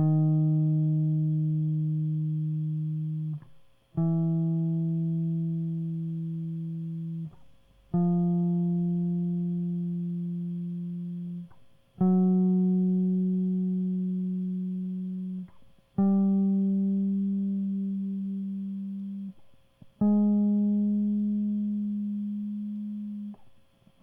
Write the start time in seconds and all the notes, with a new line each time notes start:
0.00 D#3
3.99 E3
7.95 F3
12.02 F#3
15.99 G3
20.02 G#3